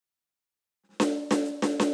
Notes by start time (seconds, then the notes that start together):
0.84 snare
0.89 snare
0.92 snare
0.94 snare
1.00 snare
1.31 snare
1.45 hi-hat pedal
1.62 snare
1.80 snare